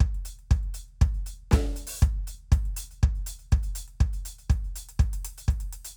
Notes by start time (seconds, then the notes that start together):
0.01 kick, closed hi-hat
0.15 closed hi-hat
0.26 closed hi-hat
0.40 closed hi-hat
0.51 closed hi-hat, kick
0.64 closed hi-hat
0.75 closed hi-hat
0.89 closed hi-hat
1.02 kick, closed hi-hat
1.15 closed hi-hat
1.27 closed hi-hat
1.52 kick, snare
1.73 closed hi-hat, kick
1.88 open hi-hat
1.99 kick, hi-hat pedal
2.04 closed hi-hat
2.15 closed hi-hat
2.24 closed hi-hat, kick
2.39 closed hi-hat
2.52 kick, closed hi-hat
2.66 closed hi-hat
2.75 closed hi-hat, kick
2.91 closed hi-hat
3.04 kick, closed hi-hat
3.16 closed hi-hat
3.27 closed hi-hat
3.39 closed hi-hat
3.53 kick, closed hi-hat
3.64 closed hi-hat
3.76 closed hi-hat
3.88 closed hi-hat
4.01 kick, closed hi-hat
4.14 closed hi-hat
4.26 closed hi-hat
4.39 closed hi-hat
4.50 kick, closed hi-hat
4.65 closed hi-hat
4.76 closed hi-hat
4.89 closed hi-hat
5.00 kick, closed hi-hat
5.14 closed hi-hat
5.25 closed hi-hat
5.38 closed hi-hat
5.49 kick, closed hi-hat
5.61 closed hi-hat
5.69 kick
5.73 closed hi-hat
5.85 closed hi-hat